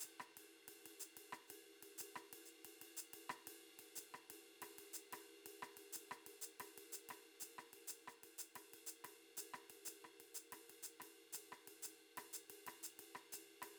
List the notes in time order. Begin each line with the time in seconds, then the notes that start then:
0.01 hi-hat pedal
0.05 ride
0.21 cross-stick
0.38 ride
0.69 ride
0.87 ride
1.01 hi-hat pedal
1.18 ride
1.33 cross-stick
1.48 hi-hat pedal, ride
1.84 ride
1.99 hi-hat pedal, ride
2.16 cross-stick
2.34 ride
2.46 hi-hat pedal
2.66 ride
2.82 ride
2.98 hi-hat pedal
3.14 ride
3.30 cross-stick
3.48 ride
3.80 ride
3.96 hi-hat pedal, ride
4.15 cross-stick
4.31 ride
4.63 cross-stick, ride
4.79 ride
4.94 hi-hat pedal
5.14 cross-stick, ride
5.47 ride
5.63 cross-stick
5.78 ride
5.93 hi-hat pedal, ride
6.12 cross-stick
6.27 ride
6.42 hi-hat pedal
6.61 cross-stick, ride
6.65 hi-hat pedal
6.79 ride
6.93 hi-hat pedal
7.10 cross-stick, ride
7.41 hi-hat pedal, ride
7.59 cross-stick
7.74 ride
7.88 hi-hat pedal, ride
8.08 cross-stick, hi-hat pedal
8.24 ride
8.39 hi-hat pedal
8.56 cross-stick, ride
8.74 ride
8.87 hi-hat pedal
9.05 cross-stick, ride
9.38 hi-hat pedal, ride
9.55 cross-stick
9.71 ride
9.86 hi-hat pedal, ride
10.05 cross-stick
10.21 ride
10.35 hi-hat pedal
10.53 cross-stick, ride
10.70 ride
10.84 hi-hat pedal
11.01 cross-stick, ride
11.06 hi-hat pedal
11.34 hi-hat pedal, ride
11.53 cross-stick
11.68 ride
11.83 hi-hat pedal, ride
12.18 cross-stick, ride
12.34 hi-hat pedal
12.51 ride
12.68 cross-stick, ride
12.84 hi-hat pedal
13.00 ride
13.16 cross-stick
13.33 hi-hat pedal, ride
13.63 cross-stick, ride